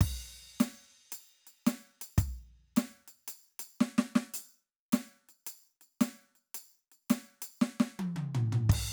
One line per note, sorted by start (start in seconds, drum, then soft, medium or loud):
0.01 kick loud
0.01 crash loud
0.60 snare loud
0.60 percussion loud
1.12 percussion loud
1.47 percussion medium
1.67 snare loud
1.67 percussion loud
2.02 percussion loud
2.18 kick loud
2.18 percussion loud
2.77 snare loud
2.77 percussion loud
3.08 percussion medium
3.28 percussion loud
3.60 percussion loud
3.81 snare loud
3.99 snare loud
4.16 snare loud
4.34 percussion loud
4.93 snare loud
4.93 percussion loud
5.29 percussion soft
5.47 percussion loud
5.81 percussion soft
6.01 snare loud
6.01 percussion loud
6.36 percussion soft
6.55 percussion loud
6.92 percussion soft
7.10 snare loud
7.10 percussion loud
7.42 percussion loud
7.62 snare loud
7.80 snare loud
7.99 high tom loud
8.16 mid tom loud
8.35 floor tom loud
8.53 floor tom loud
8.70 kick loud
8.70 ride loud
8.70 crash loud